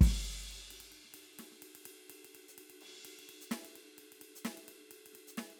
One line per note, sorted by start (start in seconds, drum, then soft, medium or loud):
0.01 open hi-hat medium
0.01 kick loud
0.01 ride loud
0.51 ride soft
0.69 snare soft
0.69 ride medium
0.72 snare soft
0.80 ride medium
0.92 ride soft
1.04 snare soft
1.14 ride medium
1.39 snare soft
1.39 ride medium
1.52 snare soft
1.62 ride medium
1.75 ride medium
1.86 ride medium
2.10 ride medium
2.25 ride soft
2.35 ride soft
2.48 hi-hat pedal medium
2.58 ride medium
2.70 ride soft
2.81 ride medium
2.99 snare soft
3.05 ride medium
3.14 snare soft
3.18 snare soft
3.18 ride soft
3.41 hi-hat pedal medium
3.51 snare medium
3.51 ride medium
3.65 ride soft
3.76 ride soft
3.88 snare soft
3.92 snare soft
3.98 ride medium
4.12 ride soft
4.16 snare soft
4.18 snare soft
4.18 ride medium
4.35 hi-hat pedal medium
4.45 snare medium
4.45 ride medium
4.57 ride soft
4.68 ride medium
4.81 snare soft
4.91 ride medium
5.06 ride soft
5.13 snare soft
5.13 ride medium
5.27 hi-hat pedal medium
5.38 snare medium
5.38 ride medium
5.45 hi-hat pedal soft
5.50 ride soft